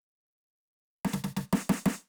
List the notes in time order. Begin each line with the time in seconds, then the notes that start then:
1.05 snare, hi-hat pedal
1.14 snare
1.24 snare
1.37 snare
1.53 snare, hi-hat pedal
1.70 snare
1.86 snare